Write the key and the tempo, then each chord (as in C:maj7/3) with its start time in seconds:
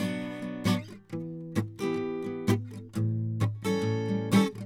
B minor, 131 BPM
0.00 B:min
1.12 E:min
2.96 A:7